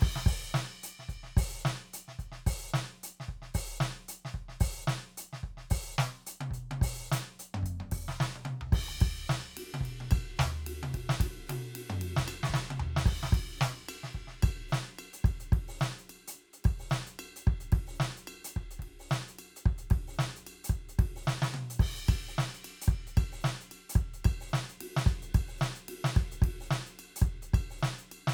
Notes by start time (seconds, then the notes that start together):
0.01 kick, crash
0.16 snare
0.26 open hi-hat, kick
0.50 snare, hi-hat pedal
0.83 closed hi-hat
0.99 snare
1.09 closed hi-hat, kick
1.23 snare
1.37 open hi-hat, kick
1.62 snare, hi-hat pedal
1.94 closed hi-hat
2.08 snare
2.19 closed hi-hat, kick
2.32 snare
2.47 open hi-hat, kick
2.70 snare, hi-hat pedal
3.03 closed hi-hat
3.20 snare
3.29 kick, closed hi-hat
3.42 snare
3.54 open hi-hat, kick
3.78 snare, hi-hat pedal
4.09 closed hi-hat
4.25 snare
4.34 kick, closed hi-hat
4.49 snare
4.60 open hi-hat, kick
4.84 snare, hi-hat pedal
5.17 closed hi-hat
5.33 snare
5.43 kick
5.57 snare
5.70 open hi-hat, kick
5.95 snare, hi-hat pedal
6.27 closed hi-hat
6.41 high tom
6.51 closed hi-hat, kick
6.71 high tom
6.82 open hi-hat, kick
7.08 snare, hi-hat pedal
7.13 closed hi-hat
7.39 closed hi-hat
7.54 mid tom
7.63 kick, closed hi-hat
7.80 mid tom
7.92 kick, open hi-hat
8.08 snare
8.14 hi-hat pedal
8.20 snare
8.36 high tom
8.45 high tom
8.61 floor tom
8.72 kick, crash
8.89 floor tom
9.01 kick, ride bell
9.26 snare, hi-hat pedal
9.57 ride
9.74 high tom
9.81 kick
9.85 ride
10.00 high tom
10.11 kick, ride bell
10.37 snare, floor tom, hi-hat pedal
10.67 ride
10.83 high tom
10.94 kick, ride
11.09 snare
11.20 kick, ride
11.47 hi-hat pedal, high tom, ride
11.75 ride
11.82 hi-hat pedal
11.90 mid tom
12.01 ride
12.17 kick, snare
12.28 ride bell
12.43 snare, hi-hat pedal
12.50 kick
12.54 snare
12.71 high tom
12.80 floor tom
12.97 snare
13.06 kick, crash
13.23 snare
13.32 kick, snare, ride, floor tom
13.58 snare, hi-hat pedal
13.89 ride bell
14.04 snare
14.13 kick, ride
14.27 snare
14.43 kick, ride bell
14.69 snare, hi-hat pedal
14.99 ride bell
15.13 closed hi-hat
15.24 kick, ride bell
15.40 closed hi-hat
15.52 kick, ride
15.68 open hi-hat
15.79 snare, hi-hat pedal
15.99 closed hi-hat
16.10 ride bell
16.28 closed hi-hat
16.35 ride
16.53 closed hi-hat
16.64 kick, ride bell, floor tom
16.79 open hi-hat
16.90 snare, hi-hat pedal
17.07 closed hi-hat
17.19 ride bell
17.36 closed hi-hat
17.47 kick
17.60 closed hi-hat
17.72 kick, ride, floor tom
17.87 open hi-hat
17.95 hi-hat pedal
18.00 snare
18.17 closed hi-hat
18.27 ride bell
18.45 closed hi-hat
18.56 kick
18.71 closed hi-hat
18.79 kick, snare, ride, floor tom
18.99 open hi-hat
19.09 snare, hi-hat pedal
19.28 closed hi-hat
19.39 ride bell
19.56 closed hi-hat
19.66 kick
19.78 closed hi-hat
19.90 kick, ride, floor tom
20.07 open hi-hat
20.14 hi-hat pedal
20.19 snare
20.36 closed hi-hat
20.47 ride bell
20.64 closed hi-hat
20.70 kick
20.89 closed hi-hat
20.99 kick, ride, floor tom
21.16 open hi-hat
21.23 hi-hat pedal
21.27 snare
21.42 snare
21.54 high tom
21.70 closed hi-hat
21.80 kick, crash
21.96 closed hi-hat
22.09 kick, ride bell
22.28 open hi-hat, hi-hat pedal
22.38 snare
22.54 closed hi-hat
22.65 ride bell
22.82 closed hi-hat
22.88 kick
23.07 closed hi-hat
23.17 kick, ride bell
23.32 open hi-hat
23.41 snare, hi-hat pedal
23.61 closed hi-hat
23.71 ride bell
23.90 closed hi-hat
23.96 kick
24.14 closed hi-hat
24.25 kick, ride bell
24.40 open hi-hat
24.49 hi-hat pedal
24.53 snare
24.69 closed hi-hat
24.81 ride
24.97 snare
25.06 kick, ride
25.22 closed hi-hat
25.35 kick, ride bell
25.48 open hi-hat
25.58 snare, hi-hat pedal
25.75 closed hi-hat
25.89 ride
26.04 snare
26.16 kick, ride
26.32 closed hi-hat
26.42 kick, ride
26.60 open hi-hat
26.66 hi-hat pedal
26.71 snare
26.86 closed hi-hat
26.99 ride bell
27.16 closed hi-hat
27.22 kick
27.42 closed hi-hat
27.54 kick, ride bell
27.70 open hi-hat
27.79 hi-hat pedal
27.83 snare
27.98 closed hi-hat
28.12 ride bell
28.27 snare